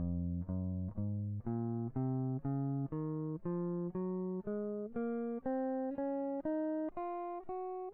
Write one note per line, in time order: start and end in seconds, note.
0.01 0.46 F2
0.52 0.93 F#2
1.01 1.44 G#2
1.49 1.92 A#2
1.98 2.42 C3
2.47 2.90 C#3
2.94 3.41 D#3
3.47 3.93 F3
3.96 4.44 F#3
4.48 4.90 G#3
4.97 5.41 A#3
5.47 5.99 C4
5.99 6.44 C#4
6.46 6.92 D#4
6.98 7.46 F4
7.50 7.94 F#4